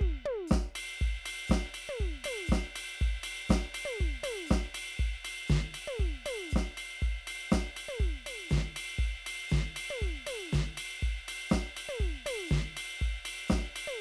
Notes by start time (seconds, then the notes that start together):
0.01 kick
0.25 high tom
0.48 snare, hi-hat pedal
0.52 kick
0.76 ride
1.01 kick
1.26 ride
1.48 kick, snare, hi-hat pedal
1.74 ride
1.89 high tom
2.00 kick
2.24 high tom, ride
2.47 kick, hi-hat pedal
2.52 snare
2.76 ride
3.01 kick
3.23 ride
3.49 kick, snare, hi-hat pedal
3.74 ride
3.85 high tom
4.01 kick
4.23 closed hi-hat, high tom, ride
4.47 kick, hi-hat pedal
4.51 snare
4.75 ride
4.99 kick
5.25 ride
5.48 kick, snare, hi-hat pedal
5.74 ride
5.87 high tom
6.00 kick
6.26 closed hi-hat, high tom, ride
6.51 kick, hi-hat pedal
6.56 snare
6.77 ride
7.02 kick
7.27 ride
7.51 kick, snare, hi-hat pedal
7.77 ride
7.88 closed hi-hat, high tom
8.00 kick
8.26 closed hi-hat, high tom, ride
8.50 kick, snare, hi-hat pedal
8.57 snare
8.76 ride
8.99 kick
9.26 ride
9.49 kick, snare, hi-hat pedal
9.76 ride
9.90 high tom
10.02 kick
10.26 closed hi-hat, high tom, ride
10.53 kick, snare, hi-hat pedal
10.78 ride
11.03 kick
11.28 ride
11.49 kick, snare, hi-hat pedal
11.77 ride
11.89 closed hi-hat, high tom
12.00 kick
12.26 high tom, ride
12.47 kick, snare, hi-hat pedal
12.77 ride
13.02 kick
13.25 ride
13.48 kick, snare, hi-hat pedal
13.59 snare
13.76 ride
13.87 high tom